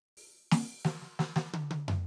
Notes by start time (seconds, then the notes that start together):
0.17 open hi-hat
0.52 open hi-hat, snare
0.85 snare
1.02 snare
1.19 snare
1.36 snare
1.47 hi-hat pedal
1.54 high tom
1.71 high tom
1.88 floor tom